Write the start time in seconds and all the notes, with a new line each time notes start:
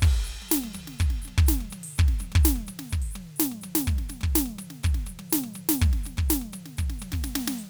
0.01 kick, hi-hat pedal, crash
0.05 crash
0.24 hi-hat pedal
0.42 high tom
0.49 snare, hi-hat pedal
0.58 snare
0.64 high tom
0.74 kick, hi-hat pedal, high tom
0.88 snare
0.99 kick, hi-hat pedal, high tom
1.11 snare
1.22 snare, hi-hat pedal
1.28 high tom
1.38 kick, high tom
1.47 snare, hi-hat pedal
1.61 high tom
1.71 hi-hat pedal, high tom
1.84 open hi-hat
1.96 kick, hi-hat pedal, high tom
2.09 snare
2.19 snare, hi-hat pedal, high tom
2.30 kick, high tom
2.36 kick
2.44 snare, hi-hat pedal
2.56 high tom
2.67 hi-hat pedal, high tom
2.80 snare
2.90 kick, hi-hat pedal, high tom
3.02 open hi-hat
3.12 hi-hat pedal
3.16 high tom
3.37 snare, hi-hat pedal
3.52 high tom
3.58 kick, hi-hat pedal
3.64 high tom
3.76 snare
3.85 kick, hi-hat pedal, high tom
3.99 snare
4.09 snare, hi-hat pedal, high tom
4.21 kick, high tom
4.35 snare, hi-hat pedal
4.46 high tom
4.59 hi-hat pedal, high tom
4.71 snare
4.84 kick, hi-hat pedal, high tom
4.95 snare
5.07 hi-hat pedal, high tom
5.20 high tom
5.26 kick
5.30 snare, hi-hat pedal
5.44 high tom
5.54 hi-hat pedal, high tom
5.69 snare
5.79 kick, hi-hat pedal, high tom
5.94 snare
6.04 snare, hi-hat pedal, high tom
6.18 kick, high tom
6.29 snare, hi-hat pedal
6.42 high tom
6.53 hi-hat pedal, high tom
6.66 snare
6.78 kick, hi-hat pedal, high tom
6.90 snare
7.00 hi-hat pedal, high tom
7.12 kick, snare
7.24 snare, hi-hat pedal
7.36 snare
7.42 kick
7.47 snare, hi-hat pedal
7.59 open hi-hat